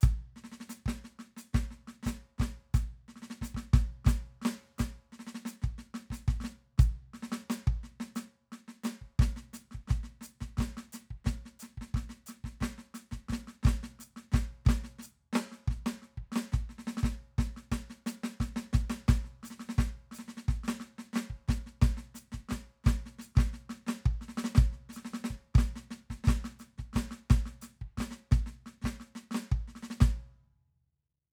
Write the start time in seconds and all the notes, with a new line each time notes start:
0.01 kick, snare, hi-hat pedal
0.36 snare
0.44 snare
0.52 snare
0.60 snare
0.69 snare, hi-hat pedal
0.86 kick, snare
1.04 snare
1.19 snare
1.37 snare, hi-hat pedal
1.53 kick, snare
1.71 snare
1.87 snare
2.03 kick, snare, hi-hat pedal
2.07 snare
2.38 kick, snare
2.41 snare
2.74 kick, snare, hi-hat pedal
3.08 snare
3.16 snare
3.22 snare
3.30 snare
3.41 kick, snare, hi-hat pedal
3.54 kick, snare
3.73 kick, snare
4.05 kick, snare
4.07 snare, hi-hat pedal
4.42 snare
4.45 snare
4.78 kick, snare, hi-hat pedal
5.12 snare
5.19 snare
5.27 snare
5.35 snare
5.45 snare, hi-hat pedal
5.62 kick, snare
5.78 snare
5.94 snare
6.10 kick, snare, hi-hat pedal
6.28 kick, snare
6.40 kick, snare
6.44 snare
6.78 kick, snare, hi-hat pedal
7.14 snare
7.23 snare
7.32 snare
7.50 snare, hi-hat pedal
7.67 kick
7.83 snare
8.00 snare
8.16 snare, hi-hat pedal
8.52 snare
8.68 snare
8.84 snare, hi-hat pedal
9.01 kick
9.19 kick, snare
9.21 snare
9.36 snare
9.53 snare, hi-hat pedal
9.71 kick, snare
9.88 kick, snare
10.03 snare
10.21 snare, hi-hat pedal
10.41 kick, snare
10.57 kick, snare
10.60 snare
10.77 snare
10.92 snare, hi-hat pedal
11.11 kick
11.25 kick, snare
11.45 snare
11.59 snare, hi-hat pedal
11.77 kick, snare
11.94 kick, snare
12.09 snare
12.26 snare, hi-hat pedal
12.44 kick, snare
12.61 kick, snare
12.63 snare
12.78 snare
12.94 snare, hi-hat pedal
13.11 kick, snare
13.29 kick, snare
13.32 snare
13.47 snare
13.63 kick, snare
13.67 snare
13.83 snare
13.99 snare, hi-hat pedal
14.16 snare
14.32 kick, snare
14.34 snare
14.65 kick, snare
14.69 snare
14.84 snare
14.99 snare, hi-hat pedal
15.33 snare
15.35 snare
15.52 snare
15.68 kick, snare
15.86 snare
16.02 snare
16.17 kick
16.32 snare
16.36 snare
16.52 kick, snare
16.69 snare
16.78 snare
16.87 snare
16.97 snare
17.03 kick, snare
17.38 kick, snare
17.56 snare
17.72 kick, snare
17.90 snare
18.06 snare, hi-hat pedal
18.24 snare
18.40 kick, snare
18.56 snare
18.73 kick, snare
18.90 snare
19.08 kick, snare
19.24 snare
19.43 snare, hi-hat pedal
19.50 snare
19.60 snare
19.69 snare
19.78 kick, snare
20.11 snare, hi-hat pedal
20.19 snare
20.28 snare
20.37 snare
20.48 kick, snare
20.63 snare
20.68 snare
20.80 snare
20.98 snare
21.13 snare
21.16 snare
21.30 kick
21.48 kick, snare
21.49 snare
21.66 snare
21.82 kick, snare
21.97 snare
22.15 snare, hi-hat pedal
22.32 kick, snare
22.49 snare
22.51 kick, snare
22.84 kick, snare
22.87 snare
23.06 snare
23.19 snare, hi-hat pedal
23.35 kick, snare
23.39 snare
23.53 snare
23.69 snare
23.87 snare
23.88 snare
24.06 kick
24.21 snare
24.28 snare
24.37 snare
24.44 snare
24.55 kick, snare
24.72 snare
24.89 snare, hi-hat pedal
24.96 snare
25.05 snare
25.14 snare
25.24 snare
25.30 kick
25.54 kick, snare
25.58 snare
25.76 snare
25.91 snare
26.10 kick, snare
26.24 kick, snare
26.28 snare
26.44 snare
26.59 snare, hi-hat pedal
26.78 kick, snare
26.93 kick, snare
26.96 snare
27.11 snare
27.30 kick, snare
27.46 snare
27.62 snare, hi-hat pedal
27.81 kick
27.97 kick, snare
28.00 snare
28.11 snare
28.31 kick, snare
28.46 snare
28.66 snare
28.82 kick, snare
28.85 snare
29.00 snare
29.15 snare
29.31 snare
29.35 snare
29.52 kick
29.68 snare
29.75 snare
29.83 snare
29.90 snare
30.00 kick, snare